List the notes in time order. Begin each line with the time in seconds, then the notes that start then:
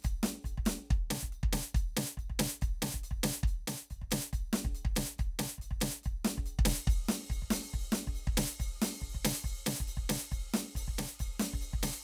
0.01 closed hi-hat, snare, hi-hat pedal
0.05 kick
0.23 closed hi-hat, snare
0.42 closed hi-hat, kick, snare
0.58 kick
0.66 closed hi-hat, snare
0.86 snare
0.91 closed hi-hat, kick
1.11 closed hi-hat, snare
1.23 kick, snare
1.33 closed hi-hat
1.44 kick
1.53 closed hi-hat, snare
1.72 closed hi-hat, kick, snare
1.97 closed hi-hat, snare
2.18 kick, closed hi-hat
2.30 kick
2.39 closed hi-hat, snare
2.59 closed hi-hat, kick, snare
2.82 closed hi-hat, snare
2.94 kick
3.04 closed hi-hat
3.11 kick
3.24 closed hi-hat, snare
3.44 kick, snare
3.48 closed hi-hat
3.68 closed hi-hat, snare
3.91 closed hi-hat, kick
4.02 kick
4.11 closed hi-hat, snare
4.27 snare
4.33 closed hi-hat, kick
4.53 closed hi-hat, snare
4.65 kick, snare
4.75 closed hi-hat
4.85 kick
4.96 closed hi-hat, snare
5.16 closed hi-hat, kick, snare
5.39 closed hi-hat, snare
5.58 closed hi-hat, kick, snare
5.71 kick
5.81 closed hi-hat, snare
6.01 closed hi-hat, snare
6.06 kick
6.25 closed hi-hat, snare
6.38 kick, snare
6.46 closed hi-hat
6.59 kick
6.66 snare, percussion
6.87 kick, snare, percussion
7.09 snare, percussion
7.29 kick, snare, percussion
7.42 kick
7.51 snare, percussion
7.74 kick
7.92 snare, percussion
8.08 kick
8.13 snare, percussion
8.28 kick
8.37 snare, percussion
8.60 kick, snare, percussion
8.82 snare, percussion
9.02 kick, snare
9.15 kick
9.25 snare, percussion
9.44 kick, snare, percussion
9.66 snare, percussion
9.80 kick
9.86 snare, percussion
9.97 kick
10.10 snare, percussion
10.32 kick, snare, percussion
10.54 snare, percussion
10.76 kick, percussion
10.80 snare
10.88 kick
10.98 snare, percussion
11.20 kick, percussion
11.40 snare, percussion
11.54 kick
11.61 snare, percussion
11.74 kick
11.83 snare, percussion